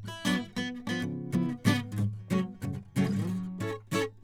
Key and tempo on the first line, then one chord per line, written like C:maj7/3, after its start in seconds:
F# minor, 187 BPM
0.00 G#:hdim7(b6)
0.72 C#:7(b9,#9,*5)/b3
2.00 F#:min